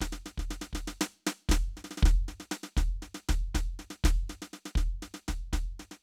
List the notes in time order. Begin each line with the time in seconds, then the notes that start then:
0.01 kick, snare
0.13 snare
0.26 snare
0.38 kick, snare
0.51 snare
0.62 snare
0.73 kick, snare
0.88 snare
1.01 snare
1.27 snare
1.49 kick, snare
1.52 snare
1.77 snare
1.84 snare
1.91 snare
1.98 snare
2.03 kick, snare
2.29 snare
2.40 snare
2.52 snare
2.64 snare
2.77 kick, snare
3.02 snare
3.15 snare
3.29 kick, snare
3.55 kick, snare
3.79 snare
3.91 snare
4.04 kick, snare
4.30 snare
4.42 snare
4.54 snare
4.66 snare
4.76 kick, snare
5.03 snare
5.14 snare
5.28 kick, snare
5.53 kick, snare
5.80 snare
5.91 snare